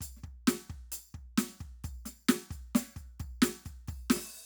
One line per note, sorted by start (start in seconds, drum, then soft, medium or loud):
0.01 kick soft
0.01 percussion medium
0.17 snare soft
0.24 kick soft
0.24 percussion soft
0.48 snare loud
0.48 percussion loud
0.70 kick soft
0.70 percussion soft
0.92 percussion loud
1.14 kick soft
1.14 percussion soft
1.38 snare loud
1.38 percussion loud
1.60 kick soft
1.60 percussion soft
1.84 kick medium
1.84 percussion medium
2.06 snare soft
2.06 percussion medium
2.29 snare loud
2.29 percussion loud
2.51 kick medium
2.51 percussion soft
2.75 snare loud
2.75 percussion loud
2.97 kick soft
2.97 percussion soft
3.20 kick medium
3.20 percussion medium
3.42 snare loud
3.42 percussion loud
3.66 kick soft
3.66 snare soft
3.66 percussion soft
3.88 kick medium
3.88 percussion medium
4.10 snare loud
4.10 percussion loud
4.17 snare medium
4.29 snare soft